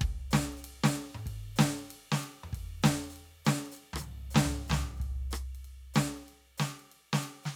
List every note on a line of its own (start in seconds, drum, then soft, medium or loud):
0.01 kick loud
0.01 ride medium
0.31 snare loud
0.31 hi-hat pedal medium
0.31 ride medium
0.53 ride soft
0.57 hi-hat pedal soft
0.64 ride medium
0.84 snare loud
0.88 hi-hat pedal medium
0.96 ride medium
1.15 high tom medium
1.26 kick medium
1.26 ride medium
1.56 snare loud
1.56 hi-hat pedal medium
1.56 ride medium
1.79 ride soft
1.91 ride medium
2.12 snare loud
2.17 hi-hat pedal medium
2.24 ride medium
2.44 mid tom medium
2.53 kick medium
2.53 ride medium
2.83 snare loud
2.83 hi-hat pedal medium
2.83 ride medium
3.04 ride soft
3.10 hi-hat pedal soft
3.16 ride soft
3.45 snare loud
3.45 hi-hat pedal medium
3.45 ride medium
3.66 ride soft
3.72 hi-hat pedal medium
3.77 ride soft
3.93 cross-stick medium
3.93 floor tom loud
3.99 floor tom soft
3.99 hi-hat pedal medium
4.31 hi-hat pedal medium
4.35 snare loud
4.35 floor tom loud
4.45 floor tom loud
4.68 snare medium
4.68 floor tom loud
4.68 hi-hat pedal soft
4.96 hi-hat pedal soft
5.00 kick medium
5.00 ride soft
5.31 cross-stick medium
5.31 hi-hat pedal medium
5.31 ride soft
5.55 ride soft
5.65 ride soft
5.94 snare loud
5.94 hi-hat pedal medium
5.94 ride medium
6.17 ride soft
6.28 ride soft
6.58 snare medium
6.58 hi-hat pedal medium
6.58 ride medium
6.79 ride soft
6.92 ride soft
7.13 snare loud
7.13 hi-hat pedal soft
7.23 ride medium
7.43 snare medium
7.43 hi-hat pedal soft